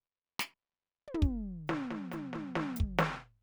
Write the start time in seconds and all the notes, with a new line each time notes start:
0.39 open hi-hat, snare
1.07 high tom
1.14 floor tom
1.22 kick, hi-hat pedal
1.67 snare, floor tom, hi-hat pedal
1.90 snare, floor tom
2.11 snare, floor tom, hi-hat pedal
2.33 snare, floor tom
2.55 snare, floor tom
2.76 closed hi-hat, kick
2.98 snare, hi-hat pedal